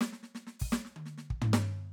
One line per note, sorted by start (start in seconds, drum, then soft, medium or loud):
0.01 snare loud
0.12 snare soft
0.23 snare soft
0.35 snare medium
0.47 snare soft
0.59 open hi-hat loud
0.59 kick medium
0.71 snare loud
0.71 hi-hat pedal medium
0.85 snare soft
0.96 closed hi-hat soft
0.96 high tom medium
1.06 snare soft
1.18 snare soft
1.30 kick medium
1.42 floor tom loud
1.53 snare loud